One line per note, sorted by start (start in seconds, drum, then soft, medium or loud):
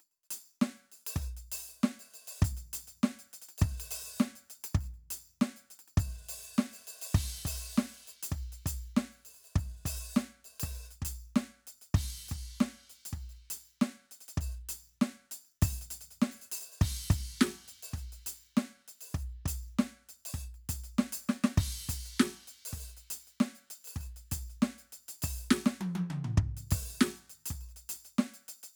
0.01 percussion soft
0.11 percussion soft
0.24 percussion soft
0.31 percussion loud
0.47 percussion soft
0.61 snare loud
0.76 percussion soft
0.92 percussion soft
1.07 percussion loud
1.16 kick medium
1.22 percussion soft
1.24 percussion soft
1.37 percussion medium
1.52 percussion loud
1.68 percussion soft
1.83 snare loud
1.99 percussion medium
2.14 percussion medium
2.27 percussion medium
2.39 kick loud
2.39 percussion soft
2.44 percussion loud
2.57 percussion medium
2.73 percussion loud
2.88 percussion medium
3.03 snare loud
3.19 percussion medium
3.33 percussion medium
3.42 percussion medium
3.49 percussion medium
3.58 kick loud
3.58 percussion medium
3.80 percussion medium
3.91 percussion loud
4.05 percussion medium
4.20 snare loud
4.20 percussion soft
4.36 percussion medium
4.50 percussion medium
4.64 percussion loud
4.75 kick loud
4.81 percussion soft
4.84 percussion soft
4.94 percussion soft
5.11 percussion loud
5.27 percussion soft
5.41 snare loud
5.56 percussion soft
5.70 percussion medium
5.79 percussion medium
5.88 percussion soft
5.97 kick loud
5.97 percussion medium
6.29 percussion loud
6.43 percussion soft
6.58 snare loud
6.73 percussion medium
6.87 percussion medium
7.02 percussion loud
7.15 kick loud
7.15 crash loud
7.29 percussion soft
7.45 kick medium
7.45 percussion loud
7.63 percussion soft
7.78 snare loud
8.07 percussion medium
8.09 percussion soft
8.23 percussion loud
8.32 kick medium
8.38 percussion soft
8.52 percussion medium
8.66 kick medium
8.66 percussion loud
8.86 percussion soft
8.97 snare loud
9.12 percussion soft
9.25 percussion medium
9.34 percussion soft
9.44 percussion soft
9.56 kick loud
9.56 percussion soft
9.86 kick medium
9.86 percussion loud
10.16 snare loud
10.16 percussion soft
10.44 percussion medium
10.60 kick medium
10.60 percussion loud
10.72 kick soft
10.72 percussion soft
10.91 percussion soft
11.02 kick medium
11.02 percussion loud
11.21 percussion soft
11.36 snare loud
11.67 percussion medium
11.81 percussion soft
11.94 kick loud
11.94 crash medium
12.00 percussion soft
12.11 percussion soft
12.28 kick medium
12.28 percussion medium
12.43 percussion soft
12.61 snare loud
12.90 percussion soft
13.05 percussion medium
13.13 kick medium
13.29 percussion soft
13.35 percussion soft
13.50 percussion loud
13.65 percussion soft
13.81 snare loud
14.11 percussion medium
14.21 percussion medium
14.28 percussion medium
14.37 kick loud
14.37 percussion medium
14.69 percussion loud
14.88 percussion soft
15.01 snare loud
15.31 percussion loud
15.45 percussion soft
15.62 kick loud
15.62 percussion loud
15.71 percussion soft
15.81 percussion medium
15.91 percussion loud
16.01 percussion medium
16.11 percussion soft
16.22 snare loud
16.31 percussion soft
16.41 percussion medium
16.52 percussion loud
16.61 percussion medium
16.72 percussion medium
16.81 kick loud
16.81 crash loud
17.10 kick loud
17.10 percussion medium
17.25 percussion soft
17.41 snare loud
17.68 percussion medium
17.83 percussion medium
17.93 kick medium
17.93 percussion soft
17.98 percussion soft
18.12 percussion soft
18.26 percussion loud
18.43 percussion soft
18.57 snare loud
18.88 percussion medium
19.01 percussion medium
19.14 kick medium
19.19 percussion soft
19.30 percussion soft
19.46 kick medium
19.46 percussion loud
19.64 percussion soft
19.79 snare loud
20.09 percussion medium
20.25 percussion loud
20.34 kick medium
20.41 kick soft
20.41 percussion soft
20.54 percussion soft
20.69 kick medium
20.69 percussion loud
20.84 percussion soft
20.98 snare loud
21.12 percussion loud
21.29 snare loud
21.44 snare loud
21.57 kick loud
21.57 crash loud
21.89 kick medium
21.89 percussion loud
22.05 percussion soft
22.20 snare loud
22.48 percussion medium
22.65 percussion loud
22.73 kick medium
22.80 percussion medium
22.88 percussion soft
22.97 percussion soft
23.10 percussion loud
23.27 percussion soft
23.40 snare loud
23.55 percussion soft
23.70 percussion medium
23.84 percussion medium
23.88 percussion medium
23.96 kick medium
24.01 percussion soft
24.04 percussion soft
24.16 percussion soft
24.32 kick medium
24.32 percussion loud
24.50 percussion soft
24.62 snare loud
24.78 percussion soft
24.92 percussion medium
25.08 percussion medium
25.22 kick medium
25.22 percussion loud
25.37 percussion medium
25.51 snare loud
25.66 snare loud
25.81 high tom loud
25.95 high tom loud
26.10 mid tom loud
26.25 floor tom loud
26.38 kick loud
26.57 percussion medium
26.71 kick loud
26.71 percussion loud
26.90 percussion medium
27.01 snare loud
27.16 percussion soft
27.30 percussion medium
27.46 percussion loud
27.50 kick medium
27.61 percussion soft
27.69 percussion soft
27.76 percussion medium
27.89 percussion loud
28.05 percussion medium
28.19 snare loud
28.34 percussion medium
28.48 percussion medium
28.63 percussion medium